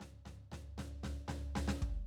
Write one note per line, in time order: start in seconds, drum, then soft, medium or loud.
0.00 snare soft
0.00 floor tom soft
0.25 snare soft
0.25 floor tom soft
0.52 snare soft
0.52 floor tom soft
0.78 snare soft
0.78 floor tom medium
1.03 snare soft
1.03 floor tom medium
1.28 snare soft
1.28 floor tom medium
1.55 snare medium
1.55 floor tom medium
1.68 snare medium
1.68 floor tom medium
1.82 kick soft